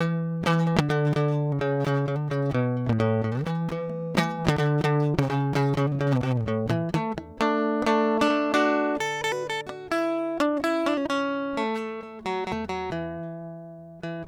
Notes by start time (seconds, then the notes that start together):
0.01 E3
0.45 E3
0.78 D3
0.91 D3
1.18 D3
1.63 C#3
1.82 C#3
2.10 D3
2.33 C#3
2.56 B2
2.91 A2
3.01 A2
3.48 E3
3.70 E3
4.17 E3
4.50 D3
4.61 D3
4.86 D3
5.20 C#3
5.54 C#3
5.79 D3
6.02 C#3
6.14 B2
6.49 A2
6.72 E3
6.95 A3
7.13 A3
7.42 A3 D4
7.88 A3 D4
8.21 A3 D4
8.32 A3
8.55 D4 F#4
9.02 A4
9.26 A4
9.33 F#4 B4
9.51 A4
9.68 F#4
9.93 E4
10.41 D4
10.58 C#4
10.65 E4
10.87 D4
11.11 C#4
11.59 A3
12.02 A3
12.27 F#3
12.49 A3
12.70 F#3
12.93 E3
14.04 E3